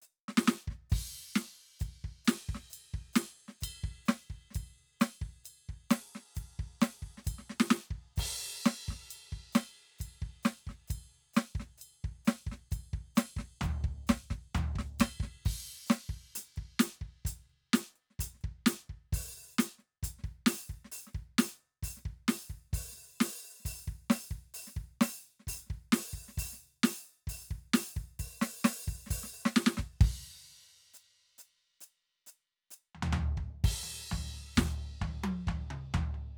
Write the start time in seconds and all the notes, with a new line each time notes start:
0.04 hi-hat pedal
0.28 snare
0.37 snare
0.47 snare
0.67 kick, snare
0.90 kick, hi-hat pedal, crash
1.35 snare, hi-hat pedal, ride bell
1.79 kick, hi-hat pedal, ride bell
2.04 kick
2.25 snare, hi-hat pedal, crash, ride bell
2.49 kick
2.55 snare
2.70 hi-hat pedal, ride bell
2.94 kick
3.13 snare, hi-hat pedal, ride bell
3.48 snare
3.61 kick, hi-hat pedal, ride bell
3.83 kick
4.05 snare, hi-hat pedal, ride bell
4.30 kick
4.51 snare, hi-hat pedal
4.55 kick, ride bell
5.00 snare, hi-hat pedal, ride bell
5.21 kick
5.45 hi-hat pedal, ride bell
5.69 kick
5.90 snare, hi-hat pedal, ride
6.15 snare
6.35 kick, hi-hat pedal, ride
6.59 kick
6.81 snare, hi-hat pedal, ride
7.02 kick
7.17 snare
7.24 kick, hi-hat pedal, ride bell
7.38 snare
7.50 snare
7.60 snare
7.68 snare, hi-hat pedal
7.90 kick
8.16 kick, hi-hat pedal, crash
8.64 snare, hi-hat pedal, ride
8.88 kick, snare
9.10 hi-hat pedal, ride bell
9.32 kick
9.52 snare, hi-hat pedal, ride bell
9.98 kick, snare, hi-hat pedal, ride bell
10.22 kick
10.43 snare, hi-hat pedal, ride bell
10.67 kick, snare
10.87 kick, hi-hat pedal, ride bell
11.34 snare, hi-hat pedal, ride bell
11.55 kick
11.60 snare
11.78 hi-hat pedal, ride bell
12.04 kick
12.25 snare, hi-hat pedal, ride bell
12.46 kick
12.52 snare
12.71 kick, hi-hat pedal, ride bell
12.93 kick
13.15 snare, hi-hat pedal, ride bell
13.36 kick, snare
13.61 kick, floor tom, hi-hat pedal
13.84 kick
14.07 kick, snare, hi-hat pedal, ride bell
14.30 kick, snare
14.54 kick, floor tom, hi-hat pedal
14.75 kick, snare
14.99 kick, snare, hi-hat pedal, ride bell
15.20 kick, snare
15.45 kick, crash
15.86 snare, hi-hat pedal
15.91 closed hi-hat
16.09 kick
16.35 closed hi-hat, snare
16.56 kick, closed hi-hat
16.79 closed hi-hat, snare
17.01 kick
17.25 closed hi-hat, kick, snare
17.49 closed hi-hat
17.73 closed hi-hat, snare
17.96 closed hi-hat
18.10 snare
18.19 closed hi-hat, kick
18.34 snare
18.41 kick, closed hi-hat
18.66 closed hi-hat, snare
18.89 kick
19.12 open hi-hat, kick
19.54 hi-hat pedal
19.58 closed hi-hat, snare
19.78 snare, closed hi-hat
20.03 closed hi-hat, kick
20.19 snare
20.24 kick, open hi-hat
20.46 open hi-hat, snare
20.69 kick, open hi-hat
20.85 snare
20.92 open hi-hat
21.07 snare
21.13 kick, open hi-hat
21.38 open hi-hat, snare
21.83 open hi-hat, kick
21.97 snare
22.05 kick, open hi-hat
22.28 open hi-hat, snare
22.50 kick, open hi-hat
22.70 open hi-hat, kick, snare
22.92 snare, open hi-hat
23.20 open hi-hat, snare
23.42 open hi-hat
23.60 snare
23.65 open hi-hat, kick
23.87 kick, open hi-hat
24.10 open hi-hat, snare
24.31 kick, open hi-hat
24.54 open hi-hat
24.67 snare
24.76 kick, open hi-hat
25.01 open hi-hat, snare
25.39 snare
25.47 open hi-hat, kick
25.66 kick, snare, open hi-hat
25.92 open hi-hat, snare
26.13 kick, open hi-hat
26.28 snare
26.37 open hi-hat, kick
26.53 snare
26.60 open hi-hat
26.83 open hi-hat, snare
27.04 open hi-hat
27.27 open hi-hat, kick
27.51 kick, open hi-hat
27.73 open hi-hat, snare
27.96 kick, open hi-hat
28.19 kick, open hi-hat
28.41 open hi-hat, snare
28.64 open hi-hat, snare
28.87 kick, open hi-hat
29.06 snare
29.10 open hi-hat, kick
29.23 snare
29.33 open hi-hat
29.45 snare
29.56 snare
29.66 snare
29.77 kick, snare
30.01 kick, crash
30.94 hi-hat pedal
31.38 hi-hat pedal
31.81 hi-hat pedal
32.26 hi-hat pedal
32.71 hi-hat pedal
32.95 floor tom
33.02 floor tom
33.37 kick, floor tom
33.64 kick, crash
33.83 floor tom
34.11 kick, floor tom
34.55 kick, snare, floor tom, hi-hat pedal
35.01 kick, floor tom
35.12 kick
35.23 high tom
35.47 kick, floor tom
35.59 kick
35.70 mid tom
35.94 kick, floor tom
36.14 floor tom